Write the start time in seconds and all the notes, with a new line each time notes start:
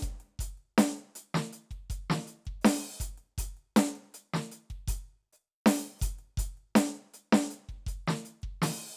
0.01 closed hi-hat, kick, hi-hat pedal
0.21 closed hi-hat
0.40 closed hi-hat, kick
0.58 closed hi-hat
0.78 closed hi-hat, snare
0.97 closed hi-hat
1.16 closed hi-hat
1.35 snare, closed hi-hat
1.53 closed hi-hat
1.71 kick, closed hi-hat
1.90 closed hi-hat, kick
2.10 snare, closed hi-hat
2.28 closed hi-hat
2.46 kick, closed hi-hat
2.62 open hi-hat, snare, hi-hat pedal
3.00 closed hi-hat, kick, hi-hat pedal
3.18 closed hi-hat
3.38 closed hi-hat, kick
3.58 closed hi-hat
3.77 closed hi-hat, snare
3.96 closed hi-hat
4.15 closed hi-hat
4.34 snare, closed hi-hat
4.52 closed hi-hat
4.71 kick, closed hi-hat
4.88 closed hi-hat, kick
5.33 hi-hat pedal
5.67 open hi-hat, snare
5.99 closed hi-hat, kick, hi-hat pedal
6.19 closed hi-hat
6.38 closed hi-hat, kick
6.58 closed hi-hat
6.76 closed hi-hat, snare
6.96 closed hi-hat
7.14 closed hi-hat
7.33 snare, closed hi-hat
7.51 closed hi-hat
7.69 kick, closed hi-hat
7.87 closed hi-hat, kick
8.08 snare, closed hi-hat
8.26 closed hi-hat
8.43 kick, closed hi-hat
8.62 open hi-hat, snare